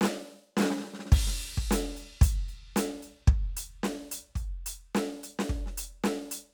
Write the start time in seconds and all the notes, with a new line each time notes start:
0.02 snare
0.04 snare
0.42 snare
0.57 snare
0.60 snare
0.63 snare
0.65 snare
0.76 snare
0.80 snare
0.84 snare
0.88 snare
0.94 snare
0.99 snare
1.05 snare
1.12 kick, snare, crash
1.27 snare
1.40 closed hi-hat
1.57 kick
1.71 closed hi-hat, snare
1.96 closed hi-hat
2.21 closed hi-hat, kick
2.48 closed hi-hat
2.76 closed hi-hat, snare
3.02 closed hi-hat
3.27 kick
3.57 closed hi-hat
3.83 snare
4.11 closed hi-hat
4.35 closed hi-hat, kick
4.66 closed hi-hat
4.95 snare
5.23 closed hi-hat
5.39 snare
5.49 kick
5.66 snare
5.77 closed hi-hat
6.04 snare
6.31 closed hi-hat